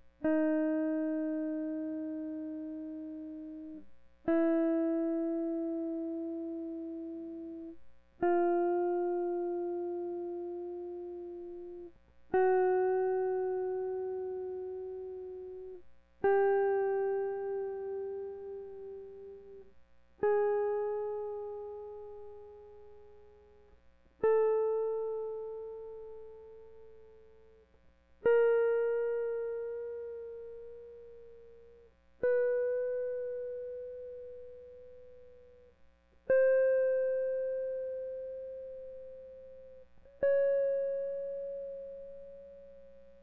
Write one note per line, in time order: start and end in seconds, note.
0.25 3.82 D#4
4.28 7.75 E4
8.23 11.90 F4
12.34 15.80 F#4
16.24 19.62 G4
20.23 22.80 G#4
24.24 26.70 A4
28.26 31.28 A#4
32.24 35.01 B4
36.30 39.83 C5
40.23 42.78 C#5